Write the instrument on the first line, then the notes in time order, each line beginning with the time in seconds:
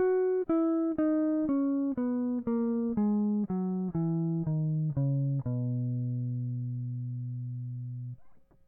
electric guitar
0.00 F#4
0.49 E4
0.99 D#4
1.49 C#4
1.98 B3
2.47 A#3
2.98 G#3
3.51 F#3
3.95 E3
4.48 D#3
4.98 C#3
5.47 B2